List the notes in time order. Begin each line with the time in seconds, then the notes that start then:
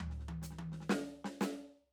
0.00 floor tom
0.10 snare
0.19 snare
0.28 high tom
0.42 snare, hi-hat pedal
0.51 snare
0.58 high tom
0.72 snare
0.80 snare
0.88 snare, hi-hat pedal
1.24 snare
1.41 snare, hi-hat pedal